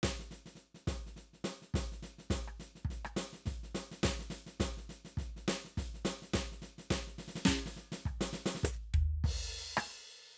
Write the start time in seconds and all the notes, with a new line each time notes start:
0.03 kick, snare
0.19 snare
0.31 snare
0.46 snare
0.55 snare
0.74 snare
0.87 kick, snare
1.06 snare
1.16 snare
1.33 snare
1.44 snare
1.62 snare
1.74 kick, snare
1.92 snare
2.02 snare
2.18 snare
2.30 kick, snare
2.48 cross-stick
2.60 snare
2.75 snare
2.85 kick
2.90 snare
3.05 cross-stick
3.16 snare
3.33 snare
3.45 kick, snare
3.63 snare
3.75 snare
3.91 snare
4.03 kick, snare
4.19 snare
4.30 snare
4.46 snare
4.60 kick, snare
4.77 snare
4.89 snare
5.05 snare
5.17 kick, snare
5.36 snare
5.48 snare
5.65 snare
5.77 kick, snare
5.94 snare
6.05 snare
6.22 snare
6.33 kick, snare
6.52 snare
6.78 snare
6.90 kick, snare
7.07 snare
7.18 snare
7.28 snare
7.35 snare
7.45 kick, snare
7.66 snare
7.76 snare
7.92 snare
8.05 kick, cross-stick
8.21 snare
8.33 snare
8.46 snare
8.55 snare
8.63 kick, high tom
8.94 mid tom
9.24 kick, crash
9.54 open hi-hat
9.77 open hi-hat, cross-stick
10.05 open hi-hat